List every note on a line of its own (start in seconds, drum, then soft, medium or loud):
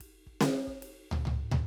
0.00 kick soft
0.00 ride medium
0.26 kick soft
0.41 snare loud
0.41 ride medium
0.67 kick soft
0.82 ride medium
1.11 floor tom loud
1.11 high tom loud
1.25 floor tom medium
1.25 high tom loud
1.51 floor tom loud
1.51 high tom loud